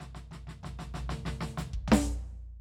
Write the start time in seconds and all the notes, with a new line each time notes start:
0.00 snare, floor tom
0.15 snare, floor tom
0.31 snare, floor tom
0.47 snare, floor tom
0.63 snare, floor tom
0.79 snare, floor tom
0.94 snare, floor tom
1.09 snare, floor tom
1.25 snare, floor tom
1.41 snare, floor tom
1.57 snare, floor tom, hi-hat pedal
1.73 kick
1.88 snare, floor tom